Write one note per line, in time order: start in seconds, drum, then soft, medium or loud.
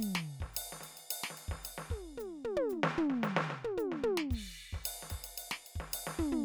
0.01 hi-hat pedal medium
0.01 ride medium
0.16 snare loud
0.41 kick soft
0.41 snare soft
0.54 hi-hat pedal medium
0.54 ride bell loud
0.73 snare soft
0.81 snare soft
0.81 ride medium
0.93 snare soft
0.98 snare soft
0.98 ride medium
1.10 hi-hat pedal medium
1.10 ride bell loud
1.24 snare medium
1.31 snare soft
1.38 ride soft
1.49 kick soft
1.49 snare soft
1.54 kick soft
1.64 hi-hat pedal medium
1.64 ride medium
1.78 snare soft
1.91 kick soft
1.91 mid tom medium
2.18 hi-hat pedal medium
2.18 mid tom medium
2.45 mid tom medium
2.57 high tom loud
2.70 floor tom soft
2.70 hi-hat pedal medium
2.84 snare loud
2.98 floor tom loud
3.10 snare soft
3.24 snare medium
3.24 hi-hat pedal medium
3.37 snare loud
3.51 snare soft
3.65 mid tom medium
3.78 hi-hat pedal medium
3.78 mid tom loud
3.92 snare soft
4.04 mid tom loud
4.18 snare medium
4.31 kick soft
4.31 hi-hat pedal medium
4.31 crash medium
4.43 kick soft
4.73 kick soft
4.73 snare soft
4.78 kick soft
4.84 hi-hat pedal medium
4.84 ride bell loud
5.03 snare soft
5.10 kick soft
5.10 snare soft
5.10 ride medium
5.24 ride medium
5.38 hi-hat pedal medium
5.38 ride loud
5.52 snare loud
5.67 ride soft
5.76 kick soft
5.80 snare soft
5.92 hi-hat pedal medium
5.92 ride bell loud
6.07 snare medium
6.19 kick soft
6.19 floor tom medium
6.32 floor tom medium